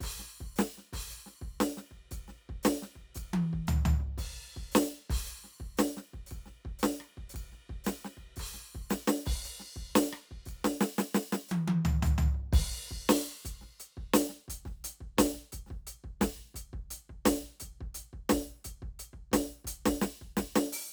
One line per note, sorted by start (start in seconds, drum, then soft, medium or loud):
0.01 kick medium
0.01 hi-hat pedal medium
0.01 crash medium
0.19 snare soft
0.41 kick medium
0.56 snare loud
0.56 hi-hat pedal medium
0.56 ride medium
0.78 snare soft
0.93 kick medium
0.93 crash medium
1.10 hi-hat pedal medium
1.10 ride soft
1.26 snare soft
1.42 kick medium
1.60 snare loud
1.60 hi-hat pedal medium
1.60 ride medium
1.77 snare soft
1.91 kick soft
2.11 kick medium
2.11 hi-hat pedal medium
2.11 ride medium
2.28 snare soft
2.49 kick medium
2.63 snare loud
2.63 hi-hat pedal medium
2.63 ride medium
2.82 snare soft
2.96 kick soft
3.15 kick medium
3.15 hi-hat pedal medium
3.15 ride medium
3.34 high tom loud
3.53 kick medium
3.67 floor tom loud
3.67 hi-hat pedal medium
3.85 floor tom loud
4.00 kick soft
4.18 kick medium
4.18 hi-hat pedal medium
4.18 ride medium
4.18 crash medium
4.57 kick medium
4.72 snare loud
4.72 hi-hat pedal medium
5.10 kick medium
5.10 crash medium
5.27 hi-hat pedal medium
5.27 ride soft
5.44 snare soft
5.60 kick medium
5.77 snare loud
5.77 hi-hat pedal medium
5.77 ride medium
5.97 snare medium
6.14 kick soft
6.27 hi-hat pedal medium
6.31 kick medium
6.31 ride medium
6.46 snare soft
6.65 kick medium
6.79 hi-hat pedal medium
6.83 snare loud
6.83 ride medium
7.00 cross-stick soft
7.17 kick soft
7.30 hi-hat pedal medium
7.34 kick medium
7.34 ride medium
7.52 snare soft
7.70 kick medium
7.84 snare loud
7.84 hi-hat pedal medium
7.84 ride medium
8.05 snare medium
8.17 kick soft
8.36 kick medium
8.36 hi-hat pedal medium
8.36 crash medium
8.54 snare soft
8.75 kick medium
8.90 snare loud
8.90 hi-hat pedal medium
8.90 ride medium
9.08 snare loud
9.26 kick medium
9.26 crash medium
9.45 hi-hat pedal medium
9.45 ride soft
9.60 snare soft
9.76 kick medium
9.96 snare loud
9.96 hi-hat pedal medium
9.96 ride medium
10.13 cross-stick medium
10.31 kick soft
10.46 kick soft
10.46 hi-hat pedal soft
10.46 ride medium
10.65 snare loud
10.81 snare loud
10.98 snare loud
10.98 hi-hat pedal medium
11.15 snare loud
11.33 snare loud
11.49 hi-hat pedal medium
11.49 high tom loud
11.68 high tom loud
11.85 floor tom loud
12.03 floor tom loud
12.03 hi-hat pedal medium
12.18 floor tom loud
12.35 kick soft
12.53 kick loud
12.53 ride medium
12.53 crash loud
12.91 kick medium
13.09 snare loud
13.09 crash medium
13.45 closed hi-hat medium
13.45 kick medium
13.61 snare soft
13.80 closed hi-hat medium
13.97 kick medium
14.14 closed hi-hat loud
14.14 snare loud
14.29 snare soft
14.48 closed hi-hat loud
14.48 kick soft
14.65 kick medium
14.65 snare soft
14.70 snare soft
14.84 closed hi-hat loud
15.01 kick soft
15.18 closed hi-hat loud
15.18 kick medium
15.18 snare loud
15.33 snare soft
15.52 closed hi-hat medium
15.52 kick soft
15.67 kick medium
15.67 snare soft
15.87 closed hi-hat medium
16.04 kick soft
16.21 closed hi-hat medium
16.21 kick medium
16.21 snare loud
16.36 cross-stick soft
16.55 closed hi-hat medium
16.55 kick soft
16.73 kick medium
16.91 closed hi-hat medium
17.10 kick soft
17.25 closed hi-hat loud
17.25 kick medium
17.25 snare loud
17.41 snare soft
17.48 snare soft
17.60 closed hi-hat medium
17.60 kick soft
17.81 kick medium
17.95 closed hi-hat medium
18.13 kick soft
18.30 closed hi-hat medium
18.30 kick medium
18.30 snare loud
18.65 closed hi-hat medium
18.65 kick soft
18.82 kick medium
18.99 closed hi-hat medium
19.13 kick soft
19.32 closed hi-hat loud
19.32 kick soft
19.32 snare loud
19.65 closed hi-hat loud
19.65 kick soft
19.86 kick medium
19.86 snare loud
20.02 snare loud
20.21 kick soft
20.37 kick soft
20.37 snare loud
20.56 snare loud
20.73 open hi-hat loud